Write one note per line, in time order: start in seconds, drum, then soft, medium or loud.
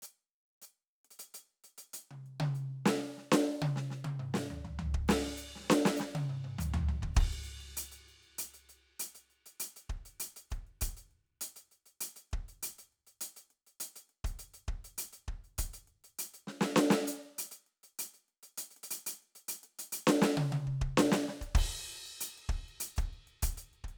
0.02 hi-hat pedal loud
0.62 hi-hat pedal medium
1.05 closed hi-hat soft
1.11 closed hi-hat soft
1.19 closed hi-hat medium
1.34 closed hi-hat medium
1.51 closed hi-hat soft
1.64 closed hi-hat soft
1.78 closed hi-hat medium
1.94 closed hi-hat medium
2.11 high tom medium
2.26 closed hi-hat soft
2.40 high tom loud
2.55 closed hi-hat soft
2.86 snare loud
3.17 snare soft
3.21 snare soft
3.32 snare loud
3.45 snare soft
3.48 snare soft
3.50 snare soft
3.54 snare soft
3.62 high tom loud
3.76 snare medium
3.91 snare soft
4.04 high tom loud
4.20 mid tom medium
4.34 snare loud
4.50 floor tom medium
4.65 floor tom medium
4.79 floor tom loud
4.94 kick medium
5.08 snare loud
5.08 crash medium
5.27 snare soft
5.37 hi-hat pedal medium
5.55 snare soft
5.60 snare soft
5.63 snare soft
5.67 snare soft
5.70 snare loud
5.85 snare loud
5.97 snare medium
5.97 hi-hat pedal medium
6.15 high tom loud
6.29 mid tom medium
6.44 mid tom medium
6.59 floor tom loud
6.59 hi-hat pedal loud
6.74 floor tom loud
6.89 floor tom medium
7.02 kick medium
7.02 floor tom medium
7.15 kick loud
7.15 hi-hat pedal soft
7.15 crash medium
7.33 closed hi-hat soft
7.44 closed hi-hat soft
7.60 closed hi-hat soft
7.77 closed hi-hat loud
7.92 closed hi-hat soft
8.08 closed hi-hat soft
8.22 closed hi-hat soft
8.38 closed hi-hat loud
8.54 closed hi-hat soft
8.69 closed hi-hat soft
9.00 closed hi-hat loud
9.15 closed hi-hat medium
9.30 closed hi-hat soft
9.46 closed hi-hat medium
9.60 closed hi-hat loud
9.76 closed hi-hat soft
9.89 kick medium
9.89 closed hi-hat soft
9.97 kick soft
10.05 closed hi-hat soft
10.20 closed hi-hat loud
10.36 closed hi-hat medium
10.51 closed hi-hat soft
10.51 kick medium
10.67 closed hi-hat soft
10.81 closed hi-hat loud
10.81 kick medium
10.97 closed hi-hat soft
11.11 closed hi-hat soft
11.27 closed hi-hat soft
11.41 closed hi-hat loud
11.56 closed hi-hat medium
11.71 closed hi-hat soft
11.86 closed hi-hat soft
12.01 closed hi-hat loud
12.16 closed hi-hat medium
12.31 kick medium
12.31 closed hi-hat soft
12.48 closed hi-hat soft
12.63 closed hi-hat loud
12.79 closed hi-hat soft
12.92 closed hi-hat soft
13.07 closed hi-hat soft
13.21 closed hi-hat loud
13.36 closed hi-hat soft
13.50 closed hi-hat soft
13.67 closed hi-hat soft
13.80 closed hi-hat loud
13.96 closed hi-hat medium
14.09 closed hi-hat soft
14.24 closed hi-hat soft
14.24 kick medium
14.39 closed hi-hat medium
14.54 closed hi-hat soft
14.68 kick medium
14.68 closed hi-hat soft
14.84 closed hi-hat soft
14.98 closed hi-hat loud
15.13 closed hi-hat soft
15.28 kick medium
15.28 closed hi-hat soft
15.44 closed hi-hat soft
15.58 closed hi-hat loud
15.58 kick medium
15.74 closed hi-hat medium
15.88 closed hi-hat soft
16.04 closed hi-hat soft
16.19 closed hi-hat loud
16.34 closed hi-hat soft
16.47 snare medium
16.61 snare loud
16.76 snare loud
16.90 snare loud
17.07 closed hi-hat loud
17.23 closed hi-hat soft
17.38 closed hi-hat loud
17.51 closed hi-hat medium
17.66 closed hi-hat soft
17.83 closed hi-hat soft
17.99 closed hi-hat loud
18.14 closed hi-hat soft
18.28 closed hi-hat soft
18.43 closed hi-hat medium
18.58 closed hi-hat loud
18.71 closed hi-hat soft
18.77 closed hi-hat soft
18.83 closed hi-hat medium
18.91 closed hi-hat loud
19.07 closed hi-hat loud
19.22 closed hi-hat soft
19.35 closed hi-hat soft
19.48 closed hi-hat loud
19.63 closed hi-hat medium
19.79 closed hi-hat loud
19.92 closed hi-hat loud
20.07 snare loud
20.22 snare loud
20.37 high tom loud
20.52 high tom loud
20.67 kick soft
20.81 kick medium
20.97 snare loud
21.12 snare loud
21.28 snare soft
21.41 kick soft
21.41 closed hi-hat medium
21.55 kick loud
21.55 crash loud
21.72 closed hi-hat soft
21.83 closed hi-hat soft
22.05 closed hi-hat soft
22.21 closed hi-hat loud
22.38 closed hi-hat soft
22.49 kick medium
22.49 closed hi-hat soft
22.68 closed hi-hat soft
22.80 closed hi-hat loud
22.96 closed hi-hat soft
22.96 kick medium
23.13 closed hi-hat soft
23.27 closed hi-hat soft
23.43 closed hi-hat loud
23.43 kick medium
23.57 closed hi-hat medium
23.73 closed hi-hat soft
23.84 kick soft
23.88 closed hi-hat soft